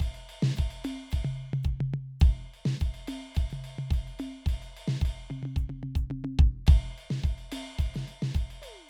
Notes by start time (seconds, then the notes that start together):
0.01 kick, hi-hat pedal, ride
0.16 ride
0.31 ride
0.45 snare
0.58 kick, hi-hat pedal, ride
0.72 ride
0.86 kick, high tom, ride
1.13 kick, hi-hat pedal, ride
1.27 floor tom
1.55 floor tom
1.65 kick, hi-hat pedal
1.83 floor tom
1.96 floor tom
2.22 kick, hi-hat pedal, ride
2.56 ride
2.68 snare
2.82 kick, hi-hat pedal, ride
2.96 ride
3.10 high tom, ride
3.37 kick, hi-hat pedal, ride
3.52 floor tom, ride
3.66 ride
3.81 floor tom
3.93 kick, hi-hat pedal, ride
4.09 ride
4.21 high tom, ride
4.48 kick, hi-hat pedal, ride
4.64 ride
4.79 ride
4.90 snare
5.02 kick, hi-hat pedal
5.07 ride
5.32 floor tom, high tom
5.45 floor tom, high tom
5.58 kick, hi-hat pedal
5.72 floor tom, high tom
5.85 floor tom, high tom
5.97 kick, hi-hat pedal
6.12 floor tom, high tom
6.26 floor tom, high tom
6.41 kick
6.69 kick, ride
7.00 ride
7.13 snare
7.24 kick, hi-hat pedal, ride
7.40 ride
7.54 high tom, ride
7.81 kick, hi-hat pedal, ride
7.96 snare, ride
8.10 ride
8.24 snare
8.36 kick, hi-hat pedal, ride
8.52 ride
8.64 high tom, ride